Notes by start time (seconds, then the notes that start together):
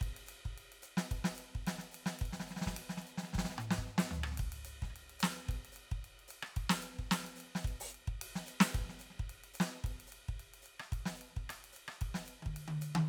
0.01 kick, ride
0.17 ride
0.26 hi-hat pedal, ride
0.45 kick
0.58 ride
0.72 ride
0.82 hi-hat pedal, ride
0.97 snare
1.11 kick, ride
1.18 kick
1.24 snare
1.35 hi-hat pedal, ride
1.55 kick
1.67 snare, ride
1.78 snare, ride
1.91 hi-hat pedal, ride
2.06 snare
2.19 kick, ride
2.26 kick, ride
2.33 snare
2.40 snare
2.46 snare, hi-hat pedal
2.50 snare
2.56 snare
2.62 snare
2.66 kick, snare
2.73 snare, ride
2.89 snare
2.97 snare
3.02 ride
3.07 hi-hat pedal, ride
3.18 snare
3.23 snare
3.33 kick, snare
3.38 kick, snare
3.45 snare
3.50 snare
3.58 hi-hat pedal, mid tom
3.71 snare
3.78 kick
3.86 snare
3.98 snare
4.11 floor tom, hi-hat pedal
4.24 cross-stick
4.32 snare
4.38 kick, ride
4.45 kick
4.52 ride
4.65 hi-hat pedal, ride
4.82 kick, snare
4.90 cross-stick
4.96 ride
5.01 snare
5.10 ride
5.19 snare, hi-hat pedal, ride
5.46 kick, snare
5.51 snare, ride
5.56 kick, snare
5.65 ride
5.72 hi-hat pedal
5.76 ride
5.92 kick
6.04 ride
6.19 ride
6.28 hi-hat pedal, ride
6.43 cross-stick
6.56 kick, ride
6.64 kick
6.70 snare
6.80 hi-hat pedal, ride
6.99 kick
7.11 snare, ride
7.23 snare, ride
7.36 hi-hat pedal
7.40 ride
7.55 snare
7.64 kick, ride
7.80 open hi-hat
7.89 hi-hat pedal
7.95 ride
8.07 kick
8.22 ride
8.36 snare
8.46 hi-hat pedal, ride
8.60 snare
8.74 kick, ride
8.81 kick
8.89 snare
8.99 snare, hi-hat pedal, ride
9.10 snare
9.16 kick, snare
9.20 snare
9.26 snare, ride
9.44 ride
9.54 hi-hat pedal, ride
9.60 snare
9.84 kick, ride
9.88 snare
9.93 snare
9.96 snare
9.98 snare, ride
10.07 hi-hat pedal
10.12 ride
10.29 kick
10.40 ride
10.54 ride
10.62 hi-hat pedal, ride
10.80 cross-stick
10.92 kick, ride
10.99 kick
11.06 snare
11.15 hi-hat pedal
11.21 ride
11.37 kick
11.49 cross-stick, ride
11.64 ride
11.73 hi-hat pedal, ride
11.88 cross-stick
12.01 kick, ride
12.14 snare
12.25 hi-hat pedal, ride
12.42 kick, high tom
12.56 ride
12.68 high tom
12.81 hi-hat pedal, ride
12.95 high tom